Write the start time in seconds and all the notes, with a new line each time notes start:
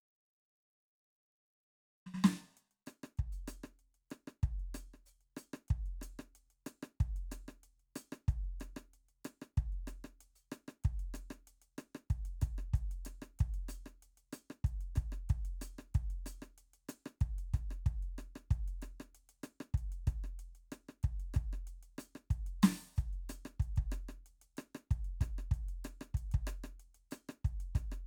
2.06 snare
2.14 snare
2.17 snare
2.24 snare
2.57 closed hi-hat
2.71 closed hi-hat
2.86 closed hi-hat, cross-stick
3.03 cross-stick
3.18 kick, closed hi-hat
3.32 closed hi-hat
3.48 closed hi-hat, cross-stick
3.64 cross-stick
3.79 closed hi-hat
3.94 closed hi-hat
4.11 cross-stick, closed hi-hat
4.27 cross-stick
4.43 kick, closed hi-hat
4.60 closed hi-hat
4.74 closed hi-hat, cross-stick
4.94 cross-stick
5.06 hi-hat pedal, open hi-hat
5.21 closed hi-hat
5.37 closed hi-hat, cross-stick
5.53 cross-stick
5.68 kick, closed hi-hat
5.86 closed hi-hat
6.02 cross-stick, closed hi-hat
6.19 cross-stick
6.35 closed hi-hat
6.50 closed hi-hat
6.66 cross-stick, closed hi-hat
6.83 cross-stick
7.00 kick, closed hi-hat
7.16 closed hi-hat
7.32 cross-stick, closed hi-hat
7.48 cross-stick
7.63 closed hi-hat
7.80 closed hi-hat
7.96 closed hi-hat, cross-stick
8.12 cross-stick
8.28 kick, closed hi-hat
8.45 closed hi-hat
8.60 cross-stick, closed hi-hat
8.76 cross-stick
8.94 closed hi-hat
9.09 closed hi-hat
9.25 cross-stick, closed hi-hat
9.42 cross-stick
9.57 kick, closed hi-hat
9.72 closed hi-hat
9.87 cross-stick, closed hi-hat
10.04 cross-stick
10.21 closed hi-hat
10.36 closed hi-hat
10.52 cross-stick, closed hi-hat
10.68 cross-stick
10.84 kick, closed hi-hat
10.99 closed hi-hat
11.14 cross-stick, closed hi-hat
11.30 cross-stick
11.47 closed hi-hat
11.62 closed hi-hat
11.78 cross-stick, closed hi-hat
11.95 cross-stick
12.10 kick, closed hi-hat
12.25 closed hi-hat
12.42 kick, cross-stick, closed hi-hat
12.58 cross-stick
12.74 kick, closed hi-hat
12.91 closed hi-hat
13.05 cross-stick, closed hi-hat
13.22 cross-stick
13.39 kick, closed hi-hat
13.54 closed hi-hat
13.69 closed hi-hat, cross-stick
13.86 cross-stick
14.03 closed hi-hat
14.17 closed hi-hat
14.33 closed hi-hat, cross-stick
14.50 cross-stick
14.64 kick, closed hi-hat
14.81 closed hi-hat
14.96 kick, cross-stick, closed hi-hat
15.12 cross-stick
15.29 kick, closed hi-hat
15.45 closed hi-hat
15.61 closed hi-hat, cross-stick
15.79 cross-stick
15.95 kick, closed hi-hat
16.10 closed hi-hat
16.26 closed hi-hat, cross-stick
16.42 cross-stick
16.58 closed hi-hat
16.74 closed hi-hat
16.89 cross-stick, closed hi-hat
17.06 cross-stick
17.21 kick, closed hi-hat
17.38 closed hi-hat
17.54 kick, cross-stick, closed hi-hat
17.71 cross-stick
17.86 kick, closed hi-hat
18.03 closed hi-hat
18.18 cross-stick, closed hi-hat
18.36 cross-stick
18.51 kick, closed hi-hat
18.68 closed hi-hat
18.82 cross-stick, closed hi-hat
19.00 cross-stick
19.15 closed hi-hat
19.29 closed hi-hat
19.43 cross-stick, closed hi-hat
19.60 cross-stick
19.74 kick, closed hi-hat
19.92 closed hi-hat
20.07 kick, cross-stick, closed hi-hat
20.24 cross-stick
20.39 closed hi-hat
20.55 closed hi-hat
20.72 cross-stick, closed hi-hat
20.89 cross-stick
21.03 kick, closed hi-hat
21.20 closed hi-hat
21.34 kick, cross-stick, closed hi-hat
21.53 cross-stick
21.67 closed hi-hat
21.83 closed hi-hat
21.98 closed hi-hat, cross-stick
22.15 cross-stick
22.30 kick, closed hi-hat
22.47 closed hi-hat
22.63 open hi-hat, snare
22.96 kick, closed hi-hat, hi-hat pedal
23.13 closed hi-hat
23.29 closed hi-hat, cross-stick
23.45 cross-stick
23.60 kick, closed hi-hat
23.76 kick, closed hi-hat
23.92 cross-stick, closed hi-hat
24.09 cross-stick
24.26 closed hi-hat
24.42 closed hi-hat
24.57 cross-stick, closed hi-hat
24.75 cross-stick
24.91 kick, closed hi-hat
25.05 closed hi-hat
25.21 kick, cross-stick, closed hi-hat
25.38 cross-stick
25.51 kick, closed hi-hat
25.69 closed hi-hat
25.84 cross-stick, closed hi-hat
26.01 cross-stick
26.14 kick, closed hi-hat
26.32 kick, closed hi-hat
26.47 cross-stick, closed hi-hat
26.64 cross-stick
26.80 closed hi-hat
26.95 closed hi-hat
27.11 closed hi-hat, cross-stick
27.29 cross-stick
27.45 kick, closed hi-hat
27.60 closed hi-hat
27.75 kick, cross-stick, closed hi-hat
27.92 cross-stick